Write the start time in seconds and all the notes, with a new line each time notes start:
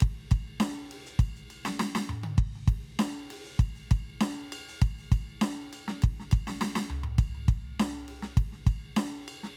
0.01 kick, ride
0.32 kick, ride bell
0.60 snare, ride
0.92 ride
1.07 closed hi-hat
1.20 kick, ride bell
1.36 closed hi-hat
1.51 ride bell
1.66 snare
1.80 snare
1.95 snare
2.10 mid tom
2.24 high tom
2.38 kick, crash
2.56 high tom
2.68 kick, ride
3.00 snare, ride bell
3.31 ride
3.45 open hi-hat
3.60 kick, ride bell
3.75 open hi-hat
3.91 kick, ride bell
4.21 snare, ride bell
4.53 ride bell
4.68 open hi-hat
4.82 kick, ride bell
4.98 open hi-hat
5.12 kick, ride bell
5.42 snare, ride bell
5.73 ride bell
5.88 snare
6.03 kick, ride
6.20 snare
6.32 kick, ride bell
6.48 snare
6.61 snare
6.76 snare
6.90 floor tom
7.04 mid tom
7.19 kick, ride bell
7.35 mid tom
7.49 kick, ride bell
7.80 snare
8.09 ride
8.23 snare
8.38 kick, ride
8.53 snare
8.67 kick, ride bell
8.97 snare, ride
9.28 ride bell
9.44 snare